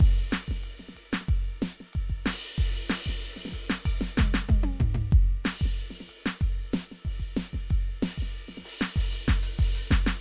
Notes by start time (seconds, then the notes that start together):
0.01 kick, ride
0.32 snare, hi-hat pedal, ride
0.49 kick, snare
0.64 ride
0.80 snare
0.89 snare
0.95 kick, hi-hat pedal, ride
1.13 snare
1.22 snare
1.29 kick, ride
1.45 ride
1.61 snare, hi-hat pedal, ride
1.81 snare
1.94 kick, ride
2.10 kick
2.25 snare, hi-hat pedal, ride
2.59 kick, ride
2.90 snare, hi-hat pedal, ride
3.07 kick, snare
3.22 ride
3.37 snare
3.46 snare
3.49 snare
3.53 kick, hi-hat pedal, ride
3.70 snare
3.86 kick, ride bell
4.01 snare
4.18 kick, snare, hi-hat pedal, mid tom
4.35 snare
4.49 kick, hi-hat pedal, mid tom
4.64 high tom
4.81 kick, floor tom, hi-hat pedal
4.95 floor tom
5.10 kick, crash
5.13 kick
5.45 snare, hi-hat pedal, ride
5.62 kick
5.66 snare
5.76 ride
5.91 snare
6.01 snare
6.07 kick, hi-hat pedal, ride
6.26 snare
6.42 kick, ride
6.57 ride
6.72 snare, hi-hat pedal, ride
6.92 snare
7.06 kick, ride
7.20 kick, ride
7.36 snare, hi-hat pedal, ride
7.54 kick, snare
7.71 kick, ride
8.03 snare, hi-hat pedal, ride
8.18 kick
8.23 snare
8.34 ride
8.49 snare
8.58 kick, snare
8.65 hi-hat pedal, ride
8.82 snare
8.97 kick, ride
9.13 closed hi-hat
9.28 kick, snare
9.43 open hi-hat
9.59 kick, ride
9.75 open hi-hat
9.91 kick, snare
10.07 snare